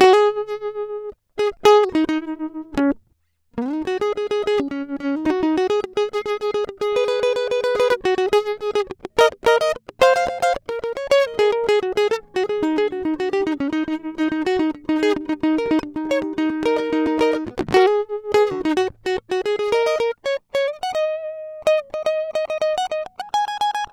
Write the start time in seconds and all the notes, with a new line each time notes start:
0.01 F#4
0.14 G#4
1.40 G#4
1.66 G#4
1.85 F#4
1.96 D#4
2.10 D#4
2.79 C#4
3.59 C#4
3.89 F#4
4.03 G#4
4.18 G#4
4.32 G#4
4.48 G#4
4.61 C#4
4.72 C#4
5.01 C#4
5.26 D#4
5.31 F#4
5.36 D#4
5.44 D#4
5.58 F#4
5.71 G#4
5.81 G4
5.98 G#4
6.14 G#4
6.27 G#4
6.42 G#4
6.56 G#4
6.65 G4
6.82 G#4
6.97 B4
7.09 B4
7.24 B4
7.37 B4
7.52 B4
7.65 B4
7.76 G#4
7.81 B4
7.92 B4
8.06 F#4
8.16 F#4
8.27 G#4
8.35 G#4
8.62 G#4
8.76 G#4
9.19 A#4 D#5
9.48 A#4 D#5
9.59 A#4 D#5
10.02 C5 F5
10.15 C5 F5
10.28 C5 F5
10.43 C5 F5
10.70 A#4
10.85 A#4
10.98 C#5
11.12 C#5
11.23 A#4
11.40 G#4 A#4
11.53 A#4
11.70 G#4
11.80 F#4
11.98 G#4
12.12 A4
12.37 F#4
12.51 G#4
12.64 D#4
12.79 G#4
12.89 F#4
13.06 D#4
13.21 F#4
13.34 G4
13.48 D#4
13.61 C#4
13.74 D#4
13.89 D#4
14.20 D#4
14.33 D#4
14.47 F#4
14.61 D#4
14.90 D#4
15.04 G#4
15.44 D#4
15.59 A#4
15.72 D#4
15.80 D4
15.97 D#4
16.12 C#5
16.39 D#4
16.66 A#4
16.77 A#4 D#5
16.85 D#5
16.94 D#4
17.08 D#4
17.22 A#4 D#5
17.33 A#4
17.75 F#4 A#4
17.87 G#4
18.35 G#4
18.46 F#4
18.66 D#4
18.78 F#4
19.07 F#4
19.32 F#4
19.47 G#4
19.73 A#4 D#5
19.87 A#4 D#5
20.01 A#4
20.27 C#5
20.56 C#5
20.84 F#5
20.96 D#5
21.68 D#5
21.95 D#5
22.07 D#5
22.36 D#5
22.51 D#5
22.62 D#5
22.78 F#5
22.93 D#5
23.20 G#5
23.35 G#5
23.46 G#5
23.62 G#5
23.72 G#5